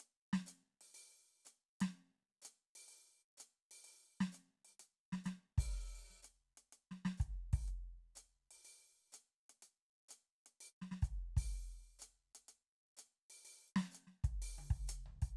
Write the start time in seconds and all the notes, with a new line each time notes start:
0.01 closed hi-hat
0.34 snare
0.47 closed hi-hat, hi-hat pedal
0.82 open hi-hat
0.95 open hi-hat
1.46 closed hi-hat, hi-hat pedal
1.81 snare, open hi-hat
2.43 closed hi-hat, hi-hat pedal
2.76 open hi-hat
2.89 open hi-hat
3.38 closed hi-hat, hi-hat pedal
3.72 open hi-hat
3.85 open hi-hat
4.21 snare
4.33 closed hi-hat, hi-hat pedal
4.66 open hi-hat
4.80 open hi-hat
5.13 snare
5.25 snare, closed hi-hat, hi-hat pedal
5.59 open hi-hat, kick
6.11 snare
6.23 closed hi-hat, hi-hat pedal
6.58 closed hi-hat
6.73 open hi-hat
6.92 snare
7.06 snare
7.18 kick, closed hi-hat, hi-hat pedal
7.54 kick, open hi-hat
7.69 open hi-hat
8.16 closed hi-hat, hi-hat pedal
8.52 open hi-hat
8.66 open hi-hat
9.13 closed hi-hat, hi-hat pedal
9.50 closed hi-hat
9.63 open hi-hat
10.09 closed hi-hat, hi-hat pedal
10.47 closed hi-hat
10.61 open hi-hat
10.82 snare
10.92 snare
11.03 kick, closed hi-hat, hi-hat pedal
11.38 kick, open hi-hat
11.54 open hi-hat
12.00 closed hi-hat, hi-hat pedal
12.36 open hi-hat
12.49 open hi-hat
12.98 closed hi-hat, hi-hat pedal
13.31 open hi-hat
13.46 open hi-hat
13.77 snare
13.92 closed hi-hat, hi-hat pedal
14.08 snare
14.25 kick, closed hi-hat
14.43 open hi-hat
14.59 high tom
14.71 kick
14.88 closed hi-hat, hi-hat pedal
15.07 floor tom
15.23 kick, open hi-hat